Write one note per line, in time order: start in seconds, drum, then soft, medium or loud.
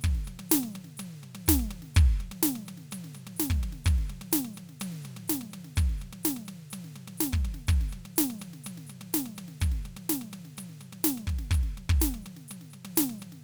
0.01 kick medium
0.01 hi-hat pedal medium
0.01 high tom medium
0.14 snare soft
0.24 hi-hat pedal soft
0.24 high tom medium
0.39 high tom medium
0.49 snare loud
0.49 hi-hat pedal medium
0.63 high tom medium
0.71 hi-hat pedal soft
0.71 high tom medium
0.84 snare soft
0.97 hi-hat pedal medium
0.97 high tom medium
1.13 snare soft
1.19 hi-hat pedal soft
1.23 high tom soft
1.35 high tom medium
1.46 kick medium
1.46 snare loud
1.46 hi-hat pedal medium
1.59 high tom medium
1.71 kick soft
1.71 high tom medium
1.82 snare soft
1.95 kick loud
1.95 hi-hat pedal medium
1.95 high tom medium
2.09 snare soft
2.18 hi-hat pedal soft
2.18 high tom soft
2.31 high tom medium
2.43 snare loud
2.43 hi-hat pedal medium
2.55 high tom medium
2.65 hi-hat pedal soft
2.65 high tom medium
2.77 snare soft
2.91 hi-hat pedal medium
2.91 high tom medium
3.04 snare soft
3.14 hi-hat pedal soft
3.14 high tom soft
3.27 high tom medium
3.36 snare medium
3.36 hi-hat pedal medium
3.50 kick medium
3.50 high tom medium
3.63 high tom medium
3.72 snare soft
3.84 kick loud
3.84 hi-hat pedal medium
3.84 high tom medium
3.98 snare soft
4.06 hi-hat pedal soft
4.06 high tom medium
4.21 high tom medium
4.32 snare loud
4.32 hi-hat pedal medium
4.44 high tom medium
4.53 hi-hat pedal soft
4.53 high tom medium
4.69 snare soft
4.80 hi-hat pedal medium
4.80 high tom loud
4.92 snare soft
5.02 hi-hat pedal soft
5.02 high tom medium
5.16 high tom medium
5.28 snare medium
5.28 hi-hat pedal medium
5.37 snare soft
5.41 high tom medium
5.50 hi-hat pedal soft
5.50 high tom medium
5.64 snare soft
5.76 kick medium
5.76 hi-hat pedal medium
5.76 high tom medium
5.89 snare soft
5.97 hi-hat pedal soft
5.97 high tom soft
6.12 high tom medium
6.23 snare loud
6.23 hi-hat pedal medium
6.36 high tom medium
6.45 hi-hat pedal soft
6.45 high tom medium
6.70 hi-hat pedal medium
6.70 high tom medium
6.84 snare soft
6.92 hi-hat pedal soft
6.92 high tom medium
7.07 high tom medium
7.17 snare medium
7.17 hi-hat pedal medium
7.32 kick medium
7.32 high tom medium
7.45 high tom medium
7.54 snare soft
7.67 kick loud
7.67 hi-hat pedal medium
7.67 high tom medium
7.81 snare soft
7.88 hi-hat pedal soft
7.92 high tom medium
8.05 high tom medium
8.16 snare loud
8.16 hi-hat pedal medium
8.30 high tom medium
8.39 hi-hat pedal medium
8.39 high tom medium
8.53 snare soft
8.64 hi-hat pedal medium
8.64 high tom medium
8.77 snare soft
8.87 hi-hat pedal medium
8.87 high tom soft
9.01 high tom medium
9.13 snare medium
9.13 hi-hat pedal medium
9.26 high tom medium
9.35 hi-hat pedal soft
9.35 high tom medium
9.48 snare soft
9.60 kick medium
9.60 hi-hat pedal medium
9.60 high tom medium
9.71 snare soft
9.82 hi-hat pedal soft
9.82 high tom soft
9.96 high tom medium
10.09 snare medium
10.09 hi-hat pedal medium
10.21 high tom medium
10.31 hi-hat pedal soft
10.31 high tom medium
10.45 snare soft
10.57 hi-hat pedal medium
10.57 high tom medium
10.69 snare soft
10.80 hi-hat pedal soft
10.80 high tom soft
10.92 high tom medium
11.03 snare loud
11.03 hi-hat pedal medium
11.17 high tom soft
11.25 kick medium
11.25 hi-hat pedal soft
11.29 high tom medium
11.38 snare soft
11.51 kick medium
11.51 hi-hat pedal medium
11.51 high tom medium
11.63 snare soft
11.77 high tom soft
11.89 kick loud
11.89 high tom medium
12.00 snare medium
12.00 hi-hat pedal medium
12.14 high tom medium
12.21 hi-hat pedal soft
12.26 high tom medium
12.36 snare soft
12.48 hi-hat pedal medium
12.48 high tom medium
12.61 snare soft
12.70 hi-hat pedal soft
12.70 high tom soft
12.85 high tom medium
12.96 snare loud
12.96 hi-hat pedal medium
13.09 high tom soft
13.18 hi-hat pedal soft
13.18 high tom medium
13.32 snare soft